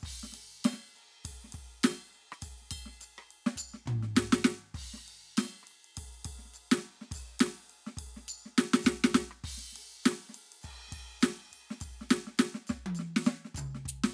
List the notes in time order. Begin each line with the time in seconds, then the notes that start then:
0.01 kick, percussion
0.05 crash
0.10 kick
0.24 snare
0.33 snare, ride
0.65 snare, ride bell, percussion
0.74 snare
0.95 percussion, ride
1.12 ride
1.25 kick, ride, percussion
1.31 kick
1.34 kick
1.45 snare
1.49 snare
1.53 kick, snare, ride
1.64 kick
1.84 snare, ride bell, percussion
1.92 snare
2.13 percussion, ride
2.33 cross-stick
2.42 kick, ride, percussion
2.49 kick
2.52 kick
2.62 snare
2.71 kick, ride bell
2.78 kick
2.82 kick
2.86 snare
3.02 ride, percussion
3.19 high tom
3.31 ride
3.47 snare
3.57 kick, percussion
3.74 snare
3.87 kick, floor tom
3.92 kick
4.03 snare
4.16 kick, snare
4.33 snare
4.45 snare
4.75 kick, crash
4.82 kick
4.85 kick
4.94 snare
4.98 cross-stick
5.09 ride
5.38 snare, ride bell, percussion
5.45 snare
5.64 cross-stick
5.68 cross-stick, ride
5.85 ride
5.95 kick, ride, percussion
6.04 kick
6.25 kick, ride
6.33 kick
6.36 kick, snare
6.46 snare
6.55 ride, percussion
6.72 snare
6.78 snare, percussion
6.84 ride
7.02 snare
7.12 kick, ride, percussion
7.19 kick
7.24 kick
7.40 snare, ride
7.47 cross-stick
7.70 ride
7.87 snare
7.98 kick, ride
8.04 kick
8.07 kick
8.17 snare
8.29 percussion
8.46 snare
8.59 snare
8.74 snare
8.83 kick, snare, percussion
9.05 snare
9.15 kick, snare
9.32 cross-stick
9.44 kick, crash
9.52 kick
9.55 kick, snare
9.73 snare
9.76 snare, ride
10.05 snare, ride, percussion
10.12 cross-stick
10.30 snare, percussion
10.35 snare, ride
10.53 ride
10.62 kick, percussion, ride
10.89 snare
10.93 kick, ride
10.99 kick
11.03 kick
11.22 snare, ride, percussion
11.33 snare
11.50 kick, ride, percussion
11.71 snare
11.81 kick, ride, percussion
11.88 kick
12.02 snare
12.10 snare, percussion
12.28 snare
12.39 snare, percussion
12.55 snare
12.68 kick, snare, percussion
12.76 kick
12.80 kick
12.87 high tom
12.95 percussion
13.00 snare
13.17 snare
13.25 snare, percussion
13.45 snare
13.55 kick, mid tom, percussion
13.65 kick
13.75 snare
13.86 kick, floor tom
13.93 kick
14.04 snare